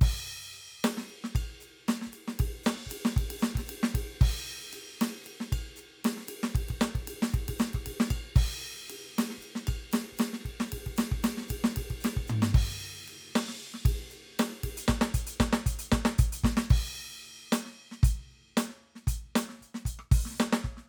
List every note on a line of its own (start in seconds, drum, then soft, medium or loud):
0.01 kick loud
0.01 hi-hat pedal medium
0.01 crash loud
0.52 hi-hat pedal soft
0.84 snare loud
0.84 ride loud
0.97 snare medium
1.01 snare medium
1.08 hi-hat pedal soft
1.08 ride soft
1.24 snare medium
1.35 kick medium
1.35 ride bell loud
1.60 hi-hat pedal medium
1.60 ride medium
1.88 snare loud
1.88 ride bell loud
2.01 snare medium
2.04 kick soft
2.04 snare soft
2.12 hi-hat pedal medium
2.12 ride medium
2.28 snare medium
2.39 kick medium
2.39 ride loud
2.63 snare loud
2.63 hi-hat pedal medium
2.63 ride medium
2.75 snare soft
2.78 snare soft
2.81 snare soft
2.86 kick soft
2.86 snare soft
2.86 hi-hat pedal medium
2.91 ride loud
3.05 snare loud
3.16 kick loud
3.16 ride loud
3.30 ride loud
3.38 snare loud
3.38 hi-hat pedal medium
3.55 kick medium
3.55 snare medium
3.55 ride loud
3.66 hi-hat pedal medium
3.66 ride loud
3.73 kick soft
3.83 snare loud
3.94 kick medium
3.94 ride loud
4.21 kick loud
4.21 crash loud
4.72 hi-hat pedal medium
4.72 ride medium
5.01 snare loud
5.01 ride loud
5.23 hi-hat pedal soft
5.23 ride medium
5.40 snare medium
5.52 kick medium
5.52 ride bell loud
5.76 hi-hat pedal medium
5.76 ride soft
6.04 snare loud
6.04 ride loud
6.17 snare soft
6.20 snare soft
6.27 hi-hat pedal medium
6.27 ride loud
6.43 snare loud
6.55 kick medium
6.55 ride loud
6.69 kick medium
6.69 ride medium
6.81 snare loud
6.81 hi-hat pedal medium
6.95 kick medium
6.95 ride medium
7.07 hi-hat pedal medium
7.07 ride loud
7.14 kick soft
7.22 snare loud
7.30 kick medium
7.30 hi-hat pedal medium
7.30 ride medium
7.48 kick medium
7.48 ride loud
7.58 snare loud
7.58 hi-hat pedal medium
7.73 kick medium
7.73 cross-stick medium
7.73 ride medium
7.85 kick soft
7.85 hi-hat pedal soft
7.85 ride loud
8.00 snare loud
8.08 kick medium
8.08 hi-hat pedal soft
8.08 ride bell loud
8.35 kick loud
8.35 hi-hat pedal medium
8.35 crash loud
8.87 hi-hat pedal soft
8.87 ride loud
9.18 snare loud
9.18 ride loud
9.30 snare soft
9.34 kick soft
9.34 snare soft
9.41 hi-hat pedal medium
9.41 ride medium
9.55 snare medium
9.67 kick medium
9.67 ride bell loud
9.91 snare loud
9.91 hi-hat pedal medium
9.91 ride loud
10.12 kick soft
10.17 snare loud
10.17 hi-hat pedal medium
10.17 ride loud
10.33 snare medium
10.40 snare soft
10.45 kick soft
10.45 ride medium
10.60 snare loud
10.67 hi-hat pedal soft
10.72 kick soft
10.72 ride loud
10.86 kick medium
10.86 ride medium
10.96 snare loud
10.96 hi-hat pedal medium
10.96 ride loud
11.11 kick medium
11.23 snare loud
11.23 hi-hat pedal medium
11.23 ride loud
11.37 snare medium
11.41 snare medium
11.46 snare soft
11.46 hi-hat pedal medium
11.50 kick medium
11.50 ride loud
11.64 snare loud
11.72 hi-hat pedal soft
11.76 kick medium
11.76 ride loud
11.90 kick medium
11.90 ride medium
12.00 hi-hat pedal medium
12.00 ride loud
12.04 snare loud
12.17 kick medium
12.27 floor tom loud
12.27 hi-hat pedal medium
12.42 snare loud
12.53 kick loud
12.53 hi-hat pedal soft
12.53 crash loud
13.05 hi-hat pedal soft
13.05 ride medium
13.35 snare loud
13.35 ride loud
13.48 snare medium
13.57 hi-hat pedal soft
13.57 ride soft
13.74 snare medium
13.85 kick loud
13.85 ride loud
14.10 hi-hat pedal medium
14.10 ride soft
14.39 snare loud
14.39 ride loud
14.49 snare soft
14.52 snare soft
14.54 snare soft
14.63 kick medium
14.63 ride loud
14.77 closed hi-hat loud
14.88 kick medium
14.88 snare loud
15.01 snare loud
15.14 closed hi-hat loud
15.14 kick medium
15.27 closed hi-hat loud
15.40 kick medium
15.40 snare loud
15.53 snare loud
15.66 closed hi-hat loud
15.66 kick medium
15.79 closed hi-hat loud
15.92 kick medium
15.92 snare loud
16.05 snare loud
16.18 closed hi-hat loud
16.18 kick loud
16.32 closed hi-hat loud
16.43 kick medium
16.43 snare loud
16.57 snare loud
16.67 kick soft
16.67 crash loud
16.70 kick loud
17.52 closed hi-hat loud
17.52 snare loud
17.65 snare soft
17.67 snare soft
17.91 snare soft
18.03 closed hi-hat loud
18.03 kick loud
18.31 closed hi-hat soft
18.57 closed hi-hat loud
18.57 snare loud
18.69 snare soft
18.71 snare soft
18.95 snare soft
19.07 closed hi-hat loud
19.07 kick medium
19.35 closed hi-hat loud
19.35 snare loud
19.49 snare soft
19.52 snare soft
19.58 closed hi-hat soft
19.58 kick soft
19.58 snare soft
19.74 snare medium
19.85 closed hi-hat loud
19.85 kick medium
19.99 cross-stick medium
20.11 open hi-hat loud
20.11 kick loud
20.25 snare soft
20.30 snare soft
20.33 snare soft
20.38 snare loud
20.38 hi-hat pedal medium
20.52 snare loud
20.63 kick medium
20.63 snare soft
20.77 snare soft